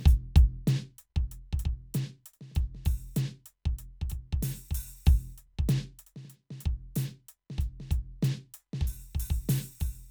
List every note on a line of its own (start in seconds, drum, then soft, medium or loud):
0.01 snare soft
0.06 open hi-hat medium
0.06 kick loud
0.11 hi-hat pedal soft
0.36 kick loud
0.36 closed hi-hat medium
0.67 closed hi-hat medium
0.67 snare loud
0.98 closed hi-hat medium
1.16 kick medium
1.31 closed hi-hat medium
1.53 kick medium
1.59 closed hi-hat medium
1.65 kick medium
1.94 closed hi-hat loud
1.94 snare medium
2.26 closed hi-hat medium
2.34 closed hi-hat soft
2.41 snare soft
2.52 open hi-hat medium
2.52 snare soft
2.56 kick medium
2.75 snare soft
2.85 open hi-hat medium
2.85 kick medium
3.14 closed hi-hat loud
3.14 snare loud
3.14 hi-hat pedal soft
3.46 closed hi-hat medium
3.66 kick medium
3.79 closed hi-hat medium
4.01 kick medium
4.10 closed hi-hat medium
4.10 kick soft
4.33 kick medium
4.43 open hi-hat loud
4.43 snare medium
4.71 open hi-hat loud
4.71 kick medium
4.83 kick soft
5.06 open hi-hat medium
5.06 kick loud
5.38 closed hi-hat medium
5.59 kick medium
5.69 closed hi-hat loud
5.69 snare loud
5.99 closed hi-hat medium
6.07 closed hi-hat soft
6.16 snare soft
6.25 snare soft
6.30 closed hi-hat medium
6.51 snare soft
6.61 open hi-hat medium
6.66 kick medium
6.96 open hi-hat medium
6.96 snare medium
7.00 hi-hat pedal soft
7.29 closed hi-hat medium
7.50 snare soft
7.58 closed hi-hat medium
7.58 kick medium
7.80 snare soft
7.91 closed hi-hat medium
7.91 kick medium
8.22 closed hi-hat medium
8.22 snare loud
8.22 hi-hat pedal medium
8.54 open hi-hat medium
8.73 snare medium
8.81 kick medium
8.87 open hi-hat medium
9.15 kick medium
9.20 open hi-hat medium
9.30 kick medium
9.49 open hi-hat loud
9.49 snare loud
9.80 open hi-hat medium
9.80 kick medium